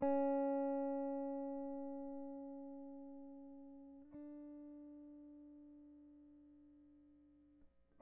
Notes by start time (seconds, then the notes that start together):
0.03 C#4
4.08 D4